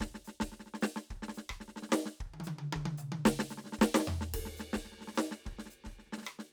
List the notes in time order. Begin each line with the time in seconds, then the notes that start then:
0.01 kick, snare
0.07 kick
0.15 snare
0.25 snare, hi-hat pedal
0.41 kick, snare
0.52 snare
0.60 snare
0.67 snare
0.75 snare
0.82 snare, hi-hat pedal
0.97 snare
1.11 kick, snare
1.17 kick
1.23 snare
1.29 snare
1.35 snare, hi-hat pedal
1.50 kick, cross-stick
1.61 snare
1.69 snare
1.76 snare
1.83 snare
1.90 snare
1.93 snare, hi-hat pedal
2.06 snare
2.21 kick
2.27 kick
2.34 high tom
2.41 hi-hat pedal, high tom
2.48 high tom
2.59 high tom
2.73 kick, high tom
2.82 kick
2.86 high tom
2.98 hi-hat pedal, mid tom
3.13 high tom
3.26 kick, snare
3.40 snare
3.50 snare, hi-hat pedal
3.58 snare
3.65 snare
3.66 snare
3.73 snare
3.79 kick, snare
3.95 snare
4.00 snare
4.05 floor tom, hi-hat pedal
4.22 snare
4.35 kick, ride
4.40 kick
4.46 kick, snare
4.57 snare, hi-hat pedal
4.74 kick, snare
4.85 snare
4.93 snare
4.99 snare
5.01 snare
5.08 snare
5.15 snare, hi-hat pedal
5.18 snare
5.32 snare
5.46 kick, snare
5.53 kick
5.59 snare
5.66 snare
5.71 hi-hat pedal
5.85 kick, snare
5.87 snare
5.92 kick
5.99 snare
6.06 snare
6.13 snare
6.18 snare
6.23 snare, hi-hat pedal
6.27 cross-stick
6.40 snare